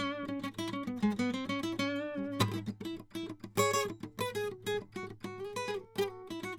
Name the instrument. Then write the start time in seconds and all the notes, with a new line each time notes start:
acoustic guitar
0.00 C#4
0.31 C#4
0.60 E4
0.75 C#4
0.89 B3
1.04 G#3
1.21 B3
1.36 C4
1.51 C#4
1.65 E4
1.81 C#4
2.42 E4
2.56 E4
2.87 E4
3.17 E4
3.59 G#4 C#5
3.76 G#4 C#5
4.21 B4
4.37 G#4
4.68 G#4
4.98 F#4
5.26 F#4
5.42 G#4
5.58 B4
5.70 G#4
6.00 F#4
6.33 E4
6.46 F#4